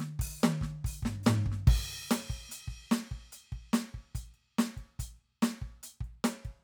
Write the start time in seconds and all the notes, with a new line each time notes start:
0.01 snare
0.19 kick, open hi-hat
0.40 snare, hi-hat pedal, high tom
0.61 kick, snare
0.85 open hi-hat, kick
1.03 kick, snare, floor tom
1.23 snare, floor tom, hi-hat pedal
1.46 kick
1.52 snare
1.67 kick, hi-hat pedal, crash
2.11 closed hi-hat, snare
2.30 closed hi-hat, kick
2.49 closed hi-hat, snare
2.68 kick
2.91 closed hi-hat, snare
3.11 kick, closed hi-hat
3.19 kick
3.32 closed hi-hat
3.52 kick, closed hi-hat
3.73 closed hi-hat, snare
3.94 kick
4.15 closed hi-hat, kick
4.23 kick
4.34 closed hi-hat
4.59 closed hi-hat, snare
4.77 kick, closed hi-hat
4.99 closed hi-hat, kick
5.16 closed hi-hat
5.42 closed hi-hat, snare
5.62 kick
5.83 closed hi-hat, snare
6.01 kick, closed hi-hat
6.24 closed hi-hat, snare
6.45 kick, closed hi-hat